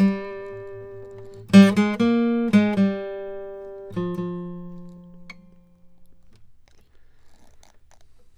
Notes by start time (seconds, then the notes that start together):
0.00 G3
1.54 G3
1.78 G#3
2.00 A#3
2.54 G#3
2.79 G3
3.98 F3
4.19 F3